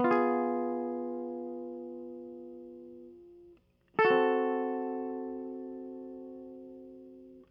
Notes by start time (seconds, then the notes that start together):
0.00 B3
0.04 F4
0.11 G#4
3.99 A4
4.05 F#4
4.11 C4